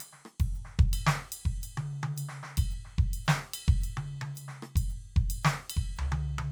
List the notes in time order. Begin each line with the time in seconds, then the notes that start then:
0.01 hi-hat pedal, ride bell
0.13 snare
0.26 cross-stick
0.40 kick, ride
0.55 hi-hat pedal
0.66 snare
0.80 kick
0.94 ride bell
1.07 snare, hi-hat pedal
1.17 snare
1.33 ride bell
1.46 kick
1.63 hi-hat pedal, ride bell
1.78 high tom
2.04 high tom
2.17 hi-hat pedal, ride bell
2.29 snare
2.44 snare
2.58 kick, ride bell
2.71 hi-hat pedal
2.86 snare
2.99 kick
3.14 ride bell
3.25 snare, hi-hat pedal
3.54 ride bell
3.69 kick
3.81 hi-hat pedal, ride bell
3.98 high tom
4.22 high tom
4.35 hi-hat pedal, ride bell
4.49 snare
4.63 cross-stick
4.76 kick, ride bell
4.90 hi-hat pedal
5.17 kick
5.31 ride bell
5.43 snare, hi-hat pedal
5.70 ride bell
5.77 kick
5.96 floor tom, hi-hat pedal
6.12 high tom
6.39 high tom